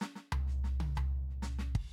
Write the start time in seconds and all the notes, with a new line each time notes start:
0.00 snare, hi-hat pedal
0.15 snare
0.32 floor tom
0.47 snare, hi-hat pedal
0.64 snare
0.80 closed hi-hat, high tom
0.95 floor tom, hi-hat pedal
1.30 snare
1.42 snare, hi-hat pedal
1.58 snare
1.75 kick, ride